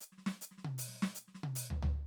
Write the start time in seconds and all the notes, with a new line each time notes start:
0.02 hi-hat pedal
0.12 snare
0.18 snare
0.26 snare
0.41 hi-hat pedal
0.51 snare
0.58 snare
0.65 high tom
0.78 hi-hat pedal
0.88 snare
0.94 snare
1.02 snare
1.15 hi-hat pedal
1.28 snare
1.34 snare
1.43 high tom
1.55 hi-hat pedal
1.70 floor tom
1.83 floor tom